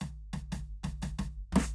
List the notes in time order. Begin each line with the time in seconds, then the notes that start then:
0.01 snare, floor tom, hi-hat pedal
0.34 snare, floor tom
0.52 snare, floor tom, hi-hat pedal
0.84 snare, floor tom
1.02 snare, floor tom, hi-hat pedal
1.19 snare, floor tom
1.53 snare, floor tom